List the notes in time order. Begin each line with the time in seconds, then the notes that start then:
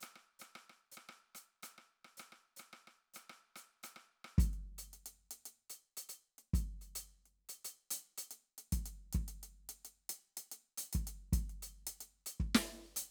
0.01 cross-stick, hi-hat pedal
0.16 cross-stick
0.40 cross-stick, hi-hat pedal
0.56 cross-stick
0.70 cross-stick
0.92 hi-hat pedal
0.97 cross-stick
1.09 cross-stick
1.35 cross-stick, hi-hat pedal
1.63 cross-stick, hi-hat pedal
1.78 cross-stick
2.05 cross-stick
2.17 cross-stick, hi-hat pedal
2.33 cross-stick
2.57 cross-stick, hi-hat pedal
2.73 cross-stick
2.88 cross-stick
3.14 cross-stick, hi-hat pedal
3.30 cross-stick
3.56 cross-stick, hi-hat pedal
3.84 cross-stick, hi-hat pedal
3.96 cross-stick
4.25 cross-stick
4.39 closed hi-hat, kick
4.54 closed hi-hat
4.79 closed hi-hat
4.94 closed hi-hat
5.06 closed hi-hat
5.31 closed hi-hat
5.46 closed hi-hat
5.70 closed hi-hat
5.97 closed hi-hat
6.09 closed hi-hat
6.39 closed hi-hat
6.54 closed hi-hat, kick
6.82 closed hi-hat
6.96 closed hi-hat
7.26 closed hi-hat
7.49 closed hi-hat
7.65 closed hi-hat
7.91 closed hi-hat
8.18 closed hi-hat
8.31 closed hi-hat
8.58 closed hi-hat
8.73 kick, closed hi-hat
8.86 closed hi-hat
9.13 kick, closed hi-hat
9.28 closed hi-hat
9.43 closed hi-hat
9.69 closed hi-hat
9.85 closed hi-hat
10.10 closed hi-hat
10.37 closed hi-hat
10.52 closed hi-hat
10.78 closed hi-hat
10.93 kick, closed hi-hat
11.07 closed hi-hat
11.33 kick, closed hi-hat
11.50 closed hi-hat
11.63 closed hi-hat
11.87 closed hi-hat
12.01 closed hi-hat
12.26 closed hi-hat
12.40 kick
12.55 snare
12.68 closed hi-hat
12.97 closed hi-hat